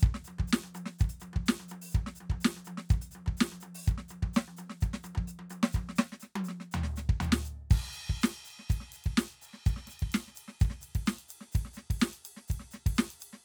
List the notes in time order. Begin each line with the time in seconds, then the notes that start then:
0.01 kick, hi-hat pedal
0.05 high tom
0.15 snare
0.25 hi-hat pedal, high tom
0.39 kick, high tom
0.48 hi-hat pedal
0.53 snare
0.64 high tom
0.75 hi-hat pedal, high tom
0.86 snare
0.99 kick, hi-hat pedal, high tom
1.10 open hi-hat
1.21 hi-hat pedal, high tom
1.34 kick, high tom
1.47 snare, hi-hat pedal
1.60 high tom
1.69 hi-hat pedal, high tom
1.82 open hi-hat
1.92 kick, hi-hat pedal
1.97 high tom
2.07 snare
2.16 hi-hat pedal
2.21 high tom
2.30 kick, high tom
2.41 hi-hat pedal
2.45 snare
2.57 high tom
2.65 hi-hat pedal, high tom
2.78 snare
2.90 kick, hi-hat pedal, high tom
3.02 open hi-hat
3.12 hi-hat pedal
3.16 high tom
3.27 kick, high tom
3.38 snare, hi-hat pedal
3.52 high tom
3.61 hi-hat pedal, high tom
3.75 open hi-hat
3.86 kick, hi-hat pedal, high tom
3.98 snare
4.09 hi-hat pedal, high tom
4.23 kick, high tom
4.34 snare, hi-hat pedal
4.48 high tom
4.57 hi-hat pedal, high tom
4.70 snare
4.81 kick, hi-hat pedal, high tom
4.94 snare
5.04 hi-hat pedal, high tom
5.16 kick, high tom
5.28 open hi-hat, hi-hat pedal
5.40 high tom
5.50 hi-hat pedal, high tom
5.64 snare
5.73 kick, hi-hat pedal
5.77 high tom
5.90 snare
5.96 snare, hi-hat pedal
6.13 snare
6.20 snare, hi-hat pedal
6.36 high tom
6.45 hi-hat pedal
6.49 snare
6.61 snare
6.72 floor tom, hi-hat pedal
6.84 snare
6.97 snare, hi-hat pedal
7.10 kick
7.21 floor tom, hi-hat pedal
7.33 snare
7.45 hi-hat pedal
7.71 kick, hi-hat pedal, crash, ride
7.93 hi-hat pedal
8.10 kick
8.22 snare, hi-hat pedal
8.27 ride
8.45 hi-hat pedal
8.51 ride
8.60 snare
8.70 kick, hi-hat pedal, ride
8.81 snare
8.93 hi-hat pedal, ride
9.05 kick, ride
9.18 snare, hi-hat pedal
9.29 ride
9.42 hi-hat pedal, ride
9.54 snare
9.66 kick, hi-hat pedal, ride
9.77 snare
9.88 snare, hi-hat pedal, ride
10.00 kick, ride
10.13 snare, hi-hat pedal, ride
10.28 snare
10.36 hi-hat pedal, ride
10.49 snare
10.61 kick, hi-hat pedal, ride
10.71 snare
10.82 hi-hat pedal, ride
10.96 kick, ride
11.07 snare, hi-hat pedal
11.19 ride
11.29 hi-hat pedal, ride
11.41 snare
11.53 kick, hi-hat pedal, ride
11.66 snare
11.74 snare, hi-hat pedal
11.91 kick, ride
12.00 snare, hi-hat pedal
12.14 ride
12.25 hi-hat pedal, ride
12.37 snare
12.48 kick, hi-hat pedal, ride
12.60 snare
12.72 snare, hi-hat pedal
12.87 kick, ride
12.96 snare, hi-hat pedal
13.11 ride
13.20 hi-hat pedal, ride
13.34 snare